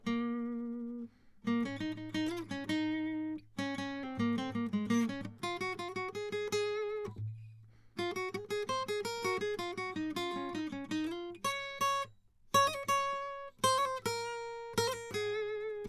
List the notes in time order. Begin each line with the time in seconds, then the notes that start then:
0.07 A#3
1.48 A#3
1.67 C#4
1.82 D#4
1.93 D#4
2.15 E4
2.52 C#4
2.70 D#4
3.59 C#4
3.80 C#4
4.04 C4
4.21 A#3
4.39 C4
4.56 A#3
4.74 G#3
4.91 A#3
5.10 C#4
5.22 A#3
5.44 F4
5.62 F#4
5.80 F4
5.97 F#4
6.16 G#4
6.34 G#4
6.53 G#4
8.00 F4
8.17 F#4
8.35 G#4
8.52 G#4
8.70 C5
8.89 G#4
9.06 A#4
9.26 F#4
9.42 G#4
9.60 F4
9.79 F#4
9.97 D#4
10.12 C#4
10.17 F4
10.37 C#4
10.56 D#4
10.74 C#4
10.92 D#4
11.12 F4
11.45 C#5
11.82 C#5
12.55 C#5
12.68 D#5
12.76 C#5
12.89 C#5
13.64 C5
13.79 C#5
13.90 C5
14.06 A#4
14.78 A#4
14.88 B4
15.00 A#4
15.15 G#4